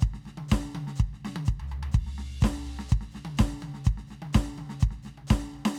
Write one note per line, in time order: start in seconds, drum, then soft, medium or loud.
0.01 kick loud
0.01 hi-hat pedal medium
0.01 high tom medium
0.14 snare soft
0.24 snare soft
0.24 hi-hat pedal soft
0.24 high tom medium
0.38 high tom medium
0.49 kick loud
0.49 snare loud
0.49 hi-hat pedal medium
0.64 high tom medium
0.72 hi-hat pedal soft
0.72 high tom loud
0.88 snare medium
0.96 hi-hat pedal medium
1.01 kick loud
1.01 high tom medium
1.14 snare soft
1.19 hi-hat pedal soft
1.26 snare medium
1.37 high tom loud
1.46 kick loud
1.46 floor tom medium
1.46 hi-hat pedal loud
1.60 floor tom loud
1.68 floor tom loud
1.68 hi-hat pedal soft
1.83 floor tom loud
1.92 kick loud
1.92 hi-hat pedal medium
1.97 ride medium
2.07 snare soft
2.16 snare medium
2.16 hi-hat pedal soft
2.42 kick loud
2.42 snare loud
2.42 hi-hat pedal medium
2.42 crash loud
2.65 hi-hat pedal soft
2.71 high tom soft
2.80 snare medium
2.89 kick loud
2.89 hi-hat pedal medium
2.89 high tom medium
3.02 snare medium
3.12 snare medium
3.12 hi-hat pedal medium
3.12 high tom medium
3.26 high tom medium
3.38 kick loud
3.38 snare loud
3.38 hi-hat pedal medium
3.51 high tom medium
3.60 hi-hat pedal medium
3.60 high tom medium
3.75 snare soft
3.85 kick loud
3.85 hi-hat pedal medium
3.85 high tom medium
3.98 snare soft
4.08 snare soft
4.08 hi-hat pedal soft
4.08 high tom medium
4.23 high tom medium
4.34 kick loud
4.34 snare loud
4.34 hi-hat pedal medium
4.47 high tom medium
4.57 hi-hat pedal medium
4.57 high tom medium
4.70 snare medium
4.80 kick loud
4.80 hi-hat pedal medium
4.80 high tom medium
4.92 snare soft
5.03 snare soft
5.03 hi-hat pedal medium
5.03 high tom medium
5.18 high tom medium
5.28 kick loud
5.28 snare loud
5.28 hi-hat pedal medium
5.42 high tom soft
5.50 hi-hat pedal soft
5.54 high tom medium
5.66 snare loud
5.75 hi-hat pedal loud